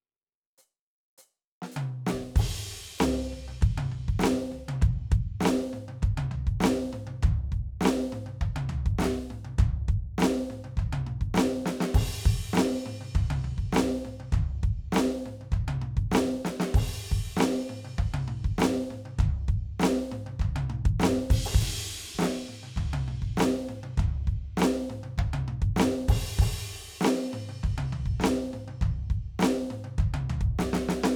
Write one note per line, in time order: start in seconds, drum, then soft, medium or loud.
0.58 hi-hat pedal soft
1.18 hi-hat pedal medium
1.62 snare medium
1.72 hi-hat pedal medium
1.76 high tom loud
2.06 snare loud
2.13 kick soft
2.36 kick loud
2.36 crash medium
2.36 ride loud
2.98 snare loud
2.98 floor tom loud
2.98 hi-hat pedal medium
3.32 floor tom medium
3.48 high tom medium
3.61 kick loud
3.61 floor tom medium
3.77 high tom loud
3.92 floor tom medium
4.08 kick loud
4.19 snare loud
4.24 snare loud
4.51 floor tom medium
4.68 high tom loud
4.82 kick loud
4.82 floor tom medium
5.12 kick loud
5.41 snare loud
5.45 snare loud
5.45 hi-hat pedal medium
5.73 mid tom medium
5.88 high tom medium
6.02 kick loud
6.02 floor tom medium
6.17 high tom loud
6.31 floor tom loud
6.47 kick medium
6.60 snare loud
6.64 snare loud
6.93 mid tom medium
7.07 high tom medium
7.23 kick loud
7.23 floor tom loud
7.52 kick medium
7.81 snare loud
7.85 snare loud
8.12 mid tom medium
8.26 high tom medium
8.41 kick medium
8.41 floor tom medium
8.56 high tom loud
8.69 floor tom loud
8.86 kick loud
8.98 snare loud
9.02 snare loud
9.30 mid tom medium
9.45 high tom medium
9.58 kick loud
9.58 floor tom loud
9.88 kick loud
10.18 snare loud
10.22 snare loud
10.50 mid tom medium
10.64 high tom medium
10.77 kick loud
10.77 floor tom medium
10.93 high tom loud
11.06 mid tom medium
11.21 kick medium
11.34 snare loud
11.38 snare loud
11.66 snare loud
11.80 snare loud
11.94 kick loud
11.94 crash loud
12.25 kick loud
12.37 kick soft
12.53 snare loud
12.57 snare loud
12.86 mid tom medium
13.01 high tom medium
13.15 kick loud
13.15 floor tom loud
13.30 high tom loud
13.44 floor tom medium
13.58 kick medium
13.72 snare loud
13.76 snare loud
14.05 mid tom medium
14.20 high tom medium
14.32 kick loud
14.32 floor tom loud
14.63 kick loud
14.92 snare loud
14.96 snare loud
15.26 mid tom medium
15.41 high tom medium
15.52 kick loud
15.52 floor tom medium
15.68 high tom loud
15.81 mid tom medium
15.97 kick loud
16.12 snare loud
16.15 snare loud
16.45 snare loud
16.60 snare loud
16.74 kick loud
16.74 crash loud
17.11 kick loud
17.37 snare loud
17.40 snare loud
17.69 mid tom medium
17.84 high tom medium
17.98 kick loud
17.98 floor tom loud
18.14 high tom loud
18.28 mid tom medium
18.44 kick medium
18.58 snare loud
18.62 snare loud
18.90 mid tom medium
19.05 high tom medium
19.18 kick loud
19.18 floor tom loud
19.48 kick loud
19.80 snare loud
19.83 snare loud
20.12 mid tom medium
20.26 high tom medium
20.39 kick loud
20.39 floor tom loud
20.56 high tom loud
20.70 mid tom loud
20.85 kick loud
21.00 snare loud
21.03 snare loud
21.30 kick loud
21.30 ride loud
21.45 crash loud
21.54 kick loud
21.61 ride loud
22.14 kick soft
22.19 snare loud
22.22 snare loud
22.28 kick soft
22.48 mid tom medium
22.63 high tom medium
22.76 kick medium
22.76 floor tom loud
22.93 high tom loud
23.08 mid tom medium
23.22 kick medium
23.37 snare loud
23.40 snare loud
23.68 mid tom medium
23.83 high tom medium
23.97 kick loud
23.97 floor tom loud
24.27 kick medium
24.57 snare loud
24.62 snare loud
24.90 mid tom medium
25.03 high tom medium
25.18 kick loud
25.18 floor tom loud
25.33 high tom loud
25.48 mid tom medium
25.62 kick loud
25.76 snare loud
25.80 snare loud
26.08 kick loud
26.08 crash loud
26.39 open hi-hat medium
26.39 kick loud
26.39 crash medium
27.00 snare loud
27.00 hi-hat pedal soft
27.05 snare loud
27.33 mid tom medium
27.49 high tom medium
27.63 kick loud
27.63 floor tom medium
27.78 high tom loud
27.92 floor tom loud
28.05 kick medium
28.20 snare loud
28.24 snare loud
28.53 mid tom medium
28.68 high tom medium
28.81 kick loud
28.81 floor tom loud
29.10 kick medium
29.39 snare loud
29.43 snare loud
29.70 mid tom medium
29.84 high tom medium
29.98 kick loud
29.98 floor tom loud
30.14 high tom loud
30.30 floor tom loud
30.41 kick loud
30.59 snare loud
30.73 snare loud
30.89 snare loud
31.04 snare loud